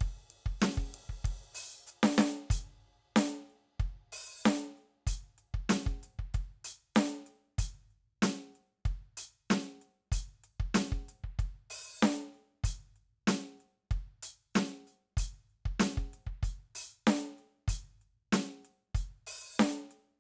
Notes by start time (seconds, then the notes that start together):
0.01 kick, ride
0.31 ride
0.46 kick
0.60 snare, hi-hat pedal, ride
0.78 kick
0.94 ride
1.09 kick
1.21 kick, hi-hat pedal
1.26 ride
1.54 open hi-hat, hi-hat pedal
1.87 hi-hat pedal
2.03 snare
2.18 snare
2.50 closed hi-hat, kick
2.84 closed hi-hat
3.16 closed hi-hat, snare
3.50 closed hi-hat
3.80 kick, closed hi-hat
4.12 open hi-hat
4.44 snare, closed hi-hat, hi-hat pedal
4.78 closed hi-hat
5.07 closed hi-hat, kick
5.38 closed hi-hat
5.54 kick
5.70 closed hi-hat, snare
5.87 kick
6.03 closed hi-hat
6.19 kick
6.34 kick, closed hi-hat
6.65 open hi-hat
6.95 snare, closed hi-hat, hi-hat pedal
7.27 closed hi-hat
7.59 closed hi-hat, kick
7.91 closed hi-hat
8.23 closed hi-hat, snare
8.56 closed hi-hat
8.86 kick, closed hi-hat
9.17 open hi-hat
9.50 snare, closed hi-hat, hi-hat pedal
9.82 closed hi-hat
10.12 closed hi-hat, kick
10.44 closed hi-hat
10.60 kick
10.75 closed hi-hat, snare
10.92 kick
11.09 closed hi-hat
11.24 kick
11.39 kick, closed hi-hat
11.70 open hi-hat
12.02 snare, closed hi-hat, hi-hat pedal
12.35 closed hi-hat
12.64 closed hi-hat, kick
12.96 closed hi-hat
13.28 closed hi-hat, snare
13.61 closed hi-hat
13.91 kick, closed hi-hat
14.23 open hi-hat
14.55 closed hi-hat, snare, hi-hat pedal
14.87 closed hi-hat
15.17 closed hi-hat, kick
15.50 closed hi-hat
15.66 kick
15.80 closed hi-hat, snare
15.98 kick
16.14 closed hi-hat
16.27 kick
16.43 closed hi-hat, kick
16.75 open hi-hat
17.07 snare, hi-hat pedal
17.39 closed hi-hat
17.68 closed hi-hat, kick
18.02 closed hi-hat
18.33 closed hi-hat, snare
18.65 closed hi-hat
18.95 closed hi-hat, kick
19.27 open hi-hat
19.60 snare, hi-hat pedal
19.91 closed hi-hat